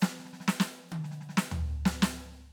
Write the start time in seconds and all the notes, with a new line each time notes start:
0.00 cross-stick, snare, hi-hat pedal
0.19 snare
0.25 snare
0.33 snare
0.40 snare
0.48 snare
0.60 snare
0.89 hi-hat pedal, high tom
1.04 snare
1.11 snare
1.21 snare
1.29 snare
1.37 snare
1.51 floor tom
1.85 snare
2.02 snare